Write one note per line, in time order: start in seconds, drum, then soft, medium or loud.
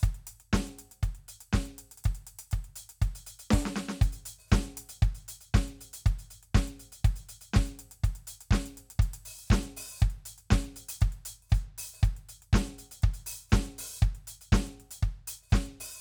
0.01 kick loud
0.01 closed hi-hat medium
0.01 hi-hat pedal soft
0.15 closed hi-hat soft
0.28 closed hi-hat medium
0.41 closed hi-hat soft
0.54 kick medium
0.54 snare loud
0.68 closed hi-hat soft
0.79 closed hi-hat medium
0.92 closed hi-hat medium
1.04 kick loud
1.04 closed hi-hat medium
1.16 closed hi-hat soft
1.29 closed hi-hat medium
1.41 closed hi-hat medium
1.54 kick loud
1.54 snare loud
1.66 closed hi-hat soft
1.79 closed hi-hat medium
1.92 closed hi-hat medium
1.98 closed hi-hat medium
2.05 kick loud
2.05 closed hi-hat medium
2.16 closed hi-hat medium
2.28 closed hi-hat medium
2.40 closed hi-hat medium
2.52 kick medium
2.52 closed hi-hat medium
2.65 closed hi-hat soft
2.77 closed hi-hat medium
2.90 closed hi-hat medium
3.02 kick loud
3.02 closed hi-hat medium
3.16 closed hi-hat medium
3.27 closed hi-hat medium
3.40 closed hi-hat medium
3.51 kick loud
3.51 snare loud
3.66 snare medium
3.77 snare loud
3.89 snare medium
4.02 closed hi-hat medium
4.02 kick loud
4.13 closed hi-hat medium
4.26 open hi-hat loud
4.39 open hi-hat soft
4.49 kick loud
4.49 snare loud
4.49 hi-hat pedal soft
4.64 closed hi-hat soft
4.73 kick soft
4.78 closed hi-hat loud
4.90 closed hi-hat medium
5.03 kick loud
5.03 closed hi-hat soft
5.16 closed hi-hat medium
5.29 closed hi-hat loud
5.42 closed hi-hat medium
5.55 kick loud
5.55 snare loud
5.69 closed hi-hat soft
5.75 kick soft
5.82 closed hi-hat medium
5.94 closed hi-hat medium
6.07 kick loud
6.07 closed hi-hat medium
6.19 closed hi-hat medium
6.31 closed hi-hat medium
6.44 closed hi-hat soft
6.55 kick loud
6.55 snare loud
6.68 closed hi-hat medium
6.80 closed hi-hat medium
6.93 closed hi-hat medium
7.05 kick loud
7.05 closed hi-hat medium
7.17 closed hi-hat medium
7.30 closed hi-hat medium
7.42 closed hi-hat medium
7.54 kick loud
7.54 snare loud
7.66 closed hi-hat medium
7.80 closed hi-hat medium
7.92 closed hi-hat medium
8.04 kick loud
8.04 closed hi-hat medium
8.16 closed hi-hat medium
8.28 closed hi-hat loud
8.42 closed hi-hat medium
8.52 kick loud
8.52 snare loud
8.67 closed hi-hat medium
8.78 closed hi-hat medium
8.91 closed hi-hat medium
9.00 kick loud
9.00 closed hi-hat medium
9.14 closed hi-hat medium
9.26 open hi-hat loud
9.39 open hi-hat medium
9.48 kick loud
9.48 hi-hat pedal soft
9.52 snare loud
9.64 closed hi-hat soft
9.78 open hi-hat loud
9.90 open hi-hat medium
9.99 kick loud
9.99 closed hi-hat medium
9.99 hi-hat pedal soft
10.11 closed hi-hat soft
10.23 closed hi-hat medium
10.23 kick soft
10.39 closed hi-hat medium
10.51 kick loud
10.51 snare loud
10.65 closed hi-hat soft
10.77 closed hi-hat medium
10.89 closed hi-hat loud
11.02 kick loud
11.02 closed hi-hat medium
11.13 closed hi-hat soft
11.26 closed hi-hat loud
11.43 open hi-hat soft
11.50 kick loud
11.50 hi-hat pedal soft
11.55 closed hi-hat medium
11.79 open hi-hat loud
11.94 open hi-hat medium
12.00 kick loud
12.00 hi-hat pedal soft
12.05 closed hi-hat medium
12.17 closed hi-hat soft
12.30 closed hi-hat medium
12.43 closed hi-hat soft
12.54 kick loud
12.54 snare loud
12.68 closed hi-hat soft
12.74 kick soft
12.79 closed hi-hat medium
12.92 closed hi-hat medium
13.03 kick loud
13.03 closed hi-hat medium
13.15 closed hi-hat medium
13.27 open hi-hat loud
13.42 open hi-hat soft
13.50 kick loud
13.50 snare loud
13.50 hi-hat pedal soft
13.66 closed hi-hat soft
13.71 kick soft
13.79 open hi-hat loud
13.93 open hi-hat soft
13.98 hi-hat pedal soft
14.03 kick loud
14.03 closed hi-hat soft
14.16 closed hi-hat soft
14.28 closed hi-hat medium
14.42 closed hi-hat medium
14.53 kick loud
14.53 snare loud
14.68 closed hi-hat soft
14.81 closed hi-hat soft
14.92 closed hi-hat medium
15.03 kick loud
15.03 closed hi-hat soft
15.28 closed hi-hat loud
15.43 open hi-hat soft
15.51 kick loud
15.51 snare loud
15.51 hi-hat pedal soft
15.66 closed hi-hat soft
15.73 kick soft
15.81 open hi-hat loud
15.94 open hi-hat soft